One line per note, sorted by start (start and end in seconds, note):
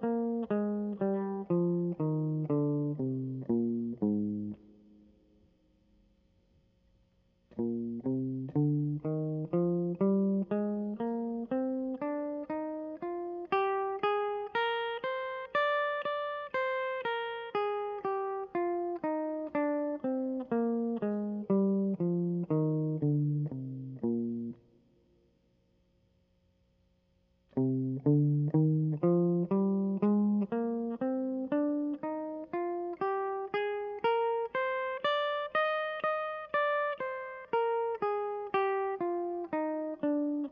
0.04 0.47 A#3
0.52 0.98 G#3
1.02 1.46 G3
1.51 1.97 F3
2.01 2.49 D#3
2.51 2.97 D3
3.01 3.48 C3
3.52 3.97 A#2
4.04 4.56 G#2
7.61 8.03 A#2
8.07 8.51 C3
8.57 9.01 D3
9.06 9.50 D#3
9.54 9.98 F3
10.02 10.47 G3
10.52 10.99 G#3
11.01 11.49 A#3
11.52 12.00 C4
12.02 12.47 D4
12.50 13.00 D#4
13.03 13.49 F4
13.53 14.01 G4
14.04 14.51 G#4
14.56 15.01 A#4
15.04 15.49 C5
15.56 16.04 D5
16.06 16.52 D5
16.55 17.05 C5
17.06 17.52 A#4
17.55 18.03 G#4
18.05 18.48 G4
18.56 19.01 F4
19.04 19.51 D#4
19.56 19.99 D4
20.05 20.46 C4
20.52 21.01 A#3
21.03 21.46 G#3
21.51 21.98 G3
22.01 22.47 F3
22.52 23.01 D#3
23.04 23.51 D3
23.53 24.04 C3
24.05 24.55 A#2
27.59 28.02 C3
28.08 28.53 D3
28.55 28.99 D#3
29.04 29.48 F3
29.52 30.02 G3
30.04 30.47 G#3
30.53 30.99 A#3
31.02 31.50 C4
31.53 31.98 D4
32.04 32.47 D#4
32.54 32.97 F4
33.02 33.49 G4
33.54 34.01 G#4
34.05 34.49 A#4
34.55 35.01 C5
35.05 35.54 D5
35.56 36.03 D#5
36.04 36.49 D#5
36.55 36.97 D5
37.01 37.48 C5
37.54 37.99 A#4
38.03 38.51 G#4
38.55 39.01 G4
39.01 39.48 F4
39.53 39.98 D#4
40.04 40.50 D4